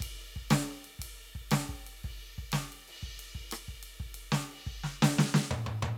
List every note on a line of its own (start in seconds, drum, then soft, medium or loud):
0.01 kick medium
0.01 ride loud
0.37 kick medium
0.51 snare loud
0.51 ride loud
0.85 ride medium
1.00 kick medium
1.00 ride loud
1.36 kick medium
1.52 snare loud
1.52 ride loud
1.70 kick medium
1.88 ride medium
2.04 kick medium
2.04 ride medium
2.39 kick medium
2.53 snare medium
2.53 ride loud
2.73 ride medium
2.89 ride medium
3.03 kick medium
3.20 ride medium
3.36 kick medium
3.52 cross-stick medium
3.52 ride loud
3.69 kick medium
3.84 ride medium
4.01 kick medium
4.15 ride medium
4.33 snare loud
4.52 ride medium
4.67 kick medium
4.84 snare medium
5.03 snare loud
5.19 snare loud
5.35 snare loud
5.52 high tom loud
5.67 high tom loud
5.83 high tom loud